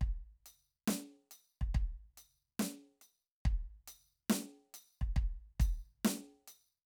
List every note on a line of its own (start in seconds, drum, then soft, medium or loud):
0.01 kick medium
0.01 crash soft
0.46 closed hi-hat medium
0.88 snare loud
1.31 closed hi-hat medium
1.61 kick soft
1.75 kick medium
1.75 crash soft
2.18 closed hi-hat medium
2.59 snare loud
3.01 closed hi-hat soft
3.45 kick medium
3.88 closed hi-hat medium
4.30 snare loud
4.74 closed hi-hat medium
5.01 kick soft
5.16 kick medium
5.16 crash soft
5.60 kick medium
5.60 closed hi-hat medium
6.05 snare loud
6.48 closed hi-hat medium